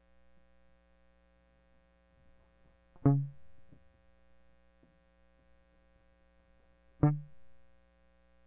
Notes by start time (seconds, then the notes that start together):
3.07 C#3
7.05 D3